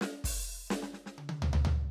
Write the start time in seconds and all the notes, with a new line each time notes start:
0.01 snare
0.24 open hi-hat, kick
0.67 snare, hi-hat pedal
0.83 snare
0.93 snare
1.06 snare
1.18 high tom
1.29 high tom
1.42 floor tom
1.53 floor tom
1.65 floor tom